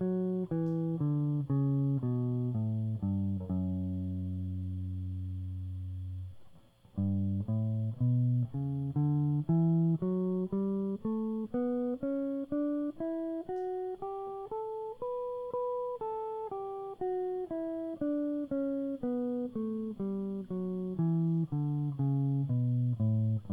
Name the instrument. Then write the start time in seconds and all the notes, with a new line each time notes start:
electric guitar
0.02 F#3
0.53 E3
1.02 D3
1.51 C#3
2.05 B2
2.58 A2
3.06 G2
3.52 F#2
7.01 G2
7.51 A2
8.04 B2
8.53 C#3
8.97 D3
9.50 E3
10.03 F#3
10.54 G3
11.06 A3
11.55 B3
12.04 C#4
12.53 D4
13.01 E4
13.50 F#4
14.03 G4
14.52 A4
15.03 B4
15.54 B4
16.02 A4
16.52 G4
17.02 F#4
17.51 E4
18.02 D4
18.52 C#4
19.04 B3
19.57 A3
20.01 G3
20.53 F#3
21.00 E3
21.56 D3
22.01 C#3
22.53 B2
23.03 A2